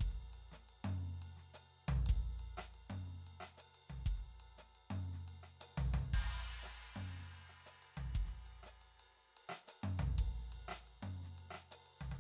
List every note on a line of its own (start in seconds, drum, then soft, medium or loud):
0.01 kick medium
0.01 ride medium
0.09 snare soft
0.34 ride medium
0.52 snare soft
0.52 hi-hat pedal medium
0.69 ride soft
0.85 mid tom medium
0.85 ride medium
1.22 ride medium
1.37 snare soft
1.43 ride soft
1.54 hi-hat pedal medium
1.54 ride medium
1.88 floor tom loud
2.06 kick medium
2.06 ride medium
2.40 ride medium
2.57 cross-stick soft
2.57 cross-stick medium
2.57 hi-hat pedal medium
2.74 ride medium
2.90 mid tom medium
2.90 ride medium
3.05 snare soft
3.27 ride medium
3.40 cross-stick soft
3.43 cross-stick soft
3.58 hi-hat pedal medium
3.58 ride medium
3.75 ride medium
3.90 floor tom medium
4.06 kick medium
4.06 ride medium
4.15 snare soft
4.40 ride medium
4.57 snare soft
4.57 hi-hat pedal medium
4.75 ride soft
4.91 mid tom medium
4.91 ride medium
5.13 snare soft
5.28 ride medium
5.43 cross-stick soft
5.61 hi-hat pedal medium
5.61 ride loud
5.78 floor tom loud
5.94 floor tom medium
6.14 kick medium
6.14 ride medium
6.35 snare soft
6.48 ride medium
6.63 cross-stick soft
6.63 snare soft
6.63 hi-hat pedal medium
6.83 ride medium
6.96 mid tom medium
6.96 ride medium
7.20 snare soft
7.24 snare soft
7.34 ride medium
7.50 cross-stick soft
7.66 hi-hat pedal medium
7.66 ride medium
7.83 ride medium
7.97 floor tom medium
8.15 kick medium
8.15 ride medium
8.26 snare soft
8.47 ride medium
8.63 cross-stick soft
8.63 hi-hat pedal medium
8.82 ride soft
9.00 ride medium
9.16 hi-hat pedal soft
9.37 ride medium
9.49 cross-stick medium
9.52 cross-stick medium
9.68 hi-hat pedal medium
9.68 ride medium
9.84 mid tom medium
9.99 floor tom medium
10.18 kick medium
10.18 ride loud
10.52 ride medium
10.68 cross-stick medium
10.68 hi-hat pedal medium
10.71 cross-stick medium
10.88 ride soft
11.03 mid tom medium
11.03 ride medium
11.24 snare soft
11.38 ride medium
11.51 cross-stick soft
11.54 cross-stick soft
11.72 hi-hat pedal medium
11.72 ride loud
11.86 ride medium
12.01 floor tom medium
12.12 floor tom medium